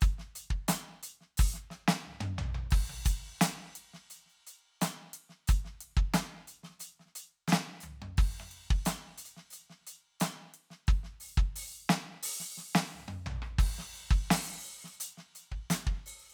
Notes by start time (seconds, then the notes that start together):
0.01 closed hi-hat, kick
0.19 snare
0.36 closed hi-hat
0.51 kick
0.68 closed hi-hat, snare
1.03 closed hi-hat
1.21 snare
1.37 open hi-hat, kick
1.54 snare
1.71 snare
1.88 snare, hi-hat pedal
2.06 mid tom
2.21 high tom
2.38 floor tom
2.55 floor tom
2.71 kick, crash
2.90 floor tom
3.05 closed hi-hat, kick
3.41 closed hi-hat, snare
3.76 closed hi-hat
3.94 snare
4.10 closed hi-hat
4.26 snare, hi-hat pedal
4.31 snare
4.34 snare
4.47 closed hi-hat
4.82 closed hi-hat, snare
5.13 closed hi-hat
5.30 snare
5.48 closed hi-hat, kick
5.65 snare
5.81 closed hi-hat
5.97 kick
6.14 closed hi-hat, snare
6.48 closed hi-hat
6.63 snare
6.70 snare
6.79 closed hi-hat, snare, hi-hat pedal
7.00 snare
7.06 snare
7.15 closed hi-hat
7.48 snare, hi-hat pedal
7.53 snare
7.81 hi-hat pedal, mid tom
8.02 high tom
8.18 kick, crash
8.40 high tom
8.51 closed hi-hat
8.71 kick
8.86 closed hi-hat, snare
9.18 closed hi-hat
9.25 closed hi-hat
9.37 snare
9.51 closed hi-hat, hi-hat pedal
9.70 snare
9.81 snare
9.87 closed hi-hat
10.20 closed hi-hat, snare
10.54 closed hi-hat
10.67 snare, closed hi-hat
10.87 kick, open hi-hat
11.04 snare
11.20 open hi-hat
11.38 kick
11.56 open hi-hat
11.89 snare
12.23 open hi-hat
12.40 snare
12.58 snare
12.75 snare
12.94 mid tom
13.08 high tom
13.26 floor tom
13.42 cross-stick
13.59 kick, crash
13.79 snare
13.94 open hi-hat
14.11 kick
14.31 open hi-hat, snare
14.65 open hi-hat
14.84 snare
15.00 closed hi-hat
15.18 snare
15.35 closed hi-hat
15.52 kick
15.70 closed hi-hat, snare
15.87 kick
16.06 open hi-hat